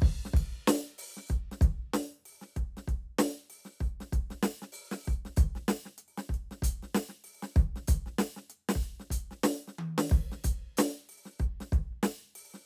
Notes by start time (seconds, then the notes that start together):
0.01 kick, crash
0.26 snare
0.34 kick, ride
0.68 snare, hi-hat pedal
0.99 open hi-hat
1.17 snare
1.29 kick, open hi-hat
1.52 snare
1.62 kick, closed hi-hat
1.94 snare, closed hi-hat
2.26 open hi-hat
2.33 open hi-hat
2.42 snare
2.56 kick, closed hi-hat, hi-hat pedal
2.78 snare
2.88 kick, closed hi-hat
3.19 snare
3.50 open hi-hat
3.60 open hi-hat
3.66 snare
3.81 kick, open hi-hat
4.01 snare
4.13 kick, closed hi-hat
4.31 snare
4.43 snare
4.63 snare
4.73 open hi-hat
4.92 snare
5.06 kick, open hi-hat
5.11 hi-hat pedal
5.26 snare
5.37 closed hi-hat, kick
5.56 snare
5.69 snare
5.86 snare
5.98 closed hi-hat
6.08 open hi-hat
6.18 snare
6.30 kick, hi-hat pedal
6.35 closed hi-hat
6.52 snare
6.63 closed hi-hat, kick
6.83 snare
6.94 snare, hi-hat pedal
7.09 snare
7.24 open hi-hat
7.35 open hi-hat
7.43 snare
7.56 kick, open hi-hat
7.76 snare
7.88 closed hi-hat, kick
8.07 snare
8.19 snare, hi-hat pedal
8.37 snare
8.50 closed hi-hat
8.69 snare
8.76 kick, hi-hat pedal
8.84 closed hi-hat
9.00 snare
9.11 closed hi-hat, kick
9.31 snare
9.44 snare
9.68 snare
9.79 high tom
9.98 snare
10.10 kick, crash
10.16 hi-hat pedal
10.32 snare
10.44 closed hi-hat, kick
10.78 closed hi-hat, snare
11.09 open hi-hat
11.18 open hi-hat
11.26 snare
11.40 kick, open hi-hat
11.61 snare
11.73 kick, closed hi-hat
11.93 kick
12.03 snare
12.36 open hi-hat
12.54 snare